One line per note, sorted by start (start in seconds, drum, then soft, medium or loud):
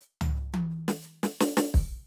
0.02 hi-hat pedal soft
0.21 floor tom loud
0.35 snare soft
0.52 hi-hat pedal soft
0.52 high tom loud
0.70 snare soft
0.88 snare loud
1.02 cross-stick soft
1.02 hi-hat pedal medium
1.23 snare loud
1.41 snare loud
1.57 snare loud
1.74 open hi-hat medium
1.74 kick loud